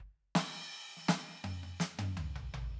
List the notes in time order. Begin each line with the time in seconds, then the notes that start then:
0.00 kick
0.35 snare, ride
0.97 snare
1.01 snare
1.05 snare
1.08 snare
1.44 high tom
1.63 high tom
1.80 snare
1.99 open hi-hat, high tom
2.17 mid tom
2.36 floor tom
2.54 floor tom